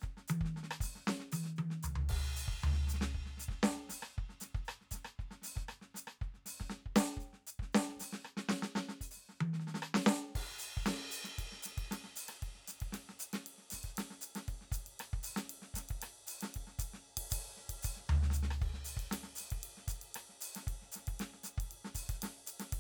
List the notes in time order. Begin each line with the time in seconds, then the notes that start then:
0.01 kick, snare, hi-hat pedal
0.17 snare
0.28 hi-hat pedal, high tom
0.41 kick, snare
0.57 snare
0.64 snare
0.71 cross-stick
0.81 kick, snare, hi-hat pedal
0.96 snare
1.06 snare, hi-hat pedal
1.20 snare
1.32 hi-hat pedal, high tom
1.45 snare
1.56 hi-hat pedal, high tom
1.71 snare
1.83 floor tom, hi-hat pedal
1.96 floor tom
2.09 kick, crash
2.37 hi-hat pedal
2.48 kick
2.62 floor tom, hi-hat pedal
2.74 snare
2.88 snare, hi-hat pedal
2.94 snare
3.02 snare
3.14 kick, snare
3.26 snare
3.38 snare, hi-hat pedal
3.49 kick, snare
3.63 snare, hi-hat pedal
3.76 snare
3.90 kick, snare, hi-hat pedal
4.03 cross-stick
4.17 kick, snare
4.30 snare
4.41 snare, hi-hat pedal
4.55 kick, snare
4.65 cross-stick, hi-hat pedal
4.81 snare
4.91 kick, snare, hi-hat pedal
5.05 cross-stick
5.20 kick, snare
5.31 snare
5.42 snare
5.44 snare, hi-hat pedal
5.56 kick, snare
5.69 cross-stick, hi-hat pedal
5.82 snare
5.95 snare, hi-hat pedal
6.08 cross-stick
6.22 kick, snare
6.34 snare
6.46 snare, hi-hat pedal
6.60 kick, snare
6.70 snare
6.86 kick
6.96 snare, hi-hat pedal
7.17 kick, hi-hat pedal
7.34 snare
7.47 hi-hat pedal
7.60 kick, snare
7.73 snare, hi-hat pedal
7.89 snare
7.97 kick, hi-hat pedal
8.01 snare
8.13 snare
8.25 cross-stick
8.37 snare
8.49 snare
8.63 snare
8.76 snare
8.89 snare
9.01 open hi-hat, kick
9.11 hi-hat pedal
9.17 snare
9.29 snare
9.41 high tom
9.54 snare
9.60 snare
9.68 snare
9.75 snare
9.83 cross-stick
9.95 snare
10.07 snare
10.36 kick, crash
10.59 hi-hat pedal
10.77 kick
10.84 snare, hi-hat pedal, ride
11.02 snare
11.12 hi-hat pedal, ride
11.25 snare, ride
11.39 kick, ride
11.52 snare
11.63 snare, hi-hat pedal, ride
11.78 kick, ride
11.92 snare, ride
12.04 snare
12.16 hi-hat pedal, ride
12.29 cross-stick, ride
12.43 kick, ride
12.55 snare
12.68 snare, hi-hat pedal, ride
12.81 kick, ride
12.93 snare, ride
13.09 snare
13.20 hi-hat pedal, ride
13.34 snare, ride
13.47 ride
13.59 snare
13.71 kick, snare, hi-hat pedal, ride
13.84 kick, ride
13.95 snare, hi-hat pedal, ride
14.11 snare
14.22 hi-hat pedal, ride
14.36 snare, ride
14.48 kick, ride
14.62 snare
14.72 kick, hi-hat pedal, ride
14.87 ride
15.00 cross-stick, ride
15.14 kick
15.24 hi-hat pedal, ride
15.37 snare, ride
15.50 ride
15.62 snare
15.74 kick, snare, hi-hat pedal, ride
15.89 kick, ride
16.02 cross-stick, ride
16.27 hi-hat pedal, ride
16.41 snare, ride
16.55 kick, ride
16.67 snare
16.79 kick, hi-hat pedal, ride
16.94 snare
17.09 snare
17.17 kick, ride
17.31 kick, hi-hat pedal, ride
17.57 snare
17.70 kick, ride
17.83 kick, hi-hat pedal, ride
17.97 snare
18.08 floor tom, hi-hat pedal
18.23 snare
18.31 snare, hi-hat pedal
18.37 snare
18.43 snare
18.51 cross-stick
18.59 kick, hi-hat pedal
18.63 ride
18.74 snare
18.85 hi-hat pedal, ride
18.97 kick, ride
19.10 snare, hi-hat pedal, ride
19.24 snare
19.36 hi-hat pedal, ride
19.41 snare
19.51 kick, ride
19.61 hi-hat pedal, ride
19.78 snare
19.88 kick, hi-hat pedal, ride
20.02 ride
20.15 cross-stick, ride
20.30 snare
20.41 hi-hat pedal, ride
20.55 snare, ride
20.67 kick, ride
20.82 snare
20.92 snare, hi-hat pedal, ride
21.08 kick, ride
21.20 snare, ride
21.34 snare
21.44 snare, hi-hat pedal
21.58 kick, ride
21.71 ride
21.85 snare
21.95 kick, hi-hat pedal, ride
22.10 kick, ride
22.23 snare, ride
22.35 snare
22.47 hi-hat pedal, ride
22.60 snare, ride
22.73 kick, ride